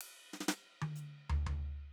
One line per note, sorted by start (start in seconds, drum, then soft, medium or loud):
0.01 ride medium
0.33 snare soft
0.40 snare soft
0.48 snare medium
0.82 high tom medium
0.96 hi-hat pedal soft
1.29 floor tom medium
1.46 floor tom medium